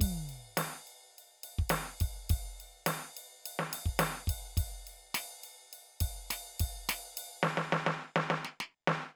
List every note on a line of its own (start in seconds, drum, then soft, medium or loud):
0.01 kick medium
0.01 ride loud
0.29 ride soft
0.57 snare loud
0.57 ride loud
0.87 ride soft
1.18 ride soft
1.44 ride medium
1.59 kick medium
1.70 snare loud
1.70 ride loud
2.00 kick medium
2.00 ride medium
2.30 kick medium
2.30 ride loud
2.60 ride medium
2.86 snare loud
2.86 ride loud
3.17 ride medium
3.46 ride loud
3.59 snare medium
3.73 ride loud
3.86 kick medium
3.99 snare loud
3.99 ride loud
4.28 kick medium
4.28 ride loud
4.57 kick medium
4.57 ride loud
4.87 ride medium
5.15 snare loud
5.15 ride loud
5.44 ride medium
5.73 ride medium
6.01 kick medium
6.01 ride loud
6.31 snare medium
6.31 ride loud
6.60 kick medium
6.60 ride loud
6.89 snare loud
6.89 ride loud
7.17 ride loud
7.43 snare loud
7.58 snare loud
7.73 snare loud
7.87 snare loud
8.16 snare loud
8.30 snare loud
8.45 snare medium
8.60 snare loud
8.88 snare loud